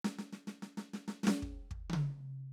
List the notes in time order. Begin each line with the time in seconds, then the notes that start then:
0.04 snare
0.19 snare
0.32 snare
0.47 snare
0.62 snare
0.77 snare
0.93 snare
1.08 snare
1.23 snare
1.27 snare
1.42 kick
1.71 kick
1.90 high tom
1.93 high tom